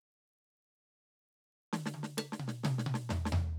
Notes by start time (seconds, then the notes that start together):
1.73 snare, high tom
1.86 snare
1.94 high tom
2.03 snare
2.17 snare, percussion
2.32 snare
2.40 mid tom
2.48 snare
2.63 snare, mid tom
2.78 snare
2.86 mid tom
2.94 snare
3.09 snare, floor tom
3.25 snare
3.32 floor tom